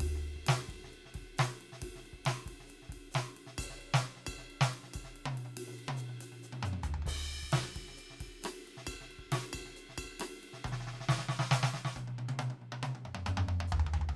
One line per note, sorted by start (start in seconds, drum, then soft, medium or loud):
0.01 kick medium
0.01 ride loud
0.14 kick soft
0.14 snare soft
0.25 ride soft
0.36 kick soft
0.47 snare loud
0.47 hi-hat pedal medium
0.47 ride loud
0.69 kick soft
0.69 ride medium
0.76 kick soft
0.79 kick soft
0.84 snare soft
0.92 hi-hat pedal soft
0.92 ride soft
1.06 snare soft
1.15 kick soft
1.15 ride medium
1.22 kick soft
1.37 snare loud
1.37 hi-hat pedal medium
1.37 ride loud
1.61 ride medium
1.73 snare soft
1.82 kick soft
1.82 hi-hat pedal soft
1.82 ride loud
1.89 kick soft
1.96 snare soft
2.06 ride soft
2.14 kick soft
2.26 snare loud
2.26 hi-hat pedal medium
2.26 ride loud
2.46 kick soft
2.46 ride medium
2.52 kick soft
2.60 snare soft
2.67 hi-hat pedal soft
2.67 ride medium
2.83 snare soft
2.90 kick soft
2.90 ride medium
2.96 kick soft
3.12 snare medium
3.12 hi-hat pedal medium
3.12 ride medium
3.37 ride medium
3.47 snare soft
3.59 kick medium
3.59 hi-hat pedal loud
3.59 ride bell loud
3.66 kick soft
3.66 snare soft
3.70 kick soft
3.82 ride soft
3.94 snare loud
4.17 snare soft
4.27 kick soft
4.27 ride bell loud
4.35 kick soft
4.35 snare soft
4.51 ride soft
4.61 snare loud
4.74 ride medium
4.84 snare soft
4.94 kick soft
4.94 ride bell medium
5.03 kick soft
5.03 snare soft
5.16 ride medium
5.26 high tom loud
5.38 ride medium
5.45 hi-hat pedal soft
5.45 high tom soft
5.57 ride loud
5.68 high tom medium
5.73 hi-hat pedal medium
5.80 ride soft
5.89 high tom loud
5.97 hi-hat pedal medium
5.97 ride soft
6.09 high tom soft
6.21 hi-hat pedal medium
6.21 ride medium
6.32 high tom soft
6.43 hi-hat pedal medium
6.53 high tom loud
6.63 hi-hat pedal medium
6.63 mid tom loud
6.74 mid tom medium
6.84 floor tom loud
6.84 hi-hat pedal medium
6.94 floor tom medium
7.03 kick medium
7.03 floor tom soft
7.07 hi-hat pedal loud
7.07 crash loud
7.22 kick soft
7.43 kick soft
7.49 kick soft
7.53 snare loud
7.53 hi-hat pedal medium
7.53 ride loud
7.76 kick soft
7.76 ride medium
7.83 kick soft
7.88 snare soft
7.97 hi-hat pedal medium
7.97 ride soft
8.11 snare soft
8.21 kick soft
8.21 ride medium
8.28 kick soft
8.43 cross-stick medium
8.43 hi-hat pedal medium
8.43 ride loud
8.68 ride medium
8.78 snare soft
8.87 kick soft
8.87 hi-hat pedal medium
8.87 ride bell loud
8.94 kick soft
9.01 snare soft
9.11 ride soft
9.19 kick soft
9.32 snare loud
9.32 hi-hat pedal medium
9.32 ride loud
9.53 kick soft
9.53 ride bell loud
9.61 kick soft
9.66 snare soft
9.77 hi-hat pedal medium
9.77 ride soft
9.90 snare soft
9.98 kick soft
9.98 ride bell loud
10.05 kick soft
10.20 cross-stick medium
10.20 hi-hat pedal medium
10.20 ride loud
10.44 ride medium
10.54 snare soft
10.65 kick soft
10.65 hi-hat pedal medium
10.65 high tom loud
10.72 kick soft
10.72 snare medium
10.81 snare soft
10.87 snare medium
10.94 snare soft
11.01 snare medium
11.09 kick soft
11.09 snare loud
11.14 hi-hat pedal medium
11.19 snare medium
11.40 snare loud
11.52 kick soft
11.52 snare loud
11.52 hi-hat pedal soft
11.63 snare loud
11.74 snare medium
11.85 snare medium
11.96 kick soft
11.96 hi-hat pedal medium
11.96 high tom loud
12.08 high tom medium
12.19 high tom medium
12.29 high tom loud
12.40 hi-hat pedal medium
12.40 high tom loud
12.50 high tom medium
12.62 high tom soft
12.73 high tom medium
12.81 kick soft
12.81 hi-hat pedal medium
12.81 high tom loud
12.95 high tom medium
13.04 kick soft
13.04 mid tom medium
13.15 mid tom loud
13.26 kick soft
13.26 hi-hat pedal medium
13.26 mid tom loud
13.38 mid tom loud
13.48 kick soft
13.48 mid tom medium
13.61 mid tom loud
13.68 hi-hat pedal medium
13.73 floor tom loud
13.80 floor tom loud
13.87 floor tom medium
13.94 floor tom loud
14.02 floor tom medium
14.09 floor tom medium